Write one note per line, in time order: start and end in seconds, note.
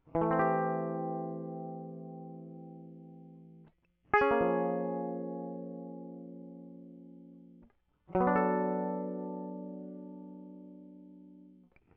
0.16 3.72 E3
0.22 3.72 A3
0.31 3.68 C4
0.39 3.68 G4
4.14 6.86 G#4
4.22 7.67 C#4
4.31 7.71 A#3
4.42 7.68 F3
8.15 11.70 F#3
8.21 11.70 B3
8.27 11.68 D4
8.36 10.83 A4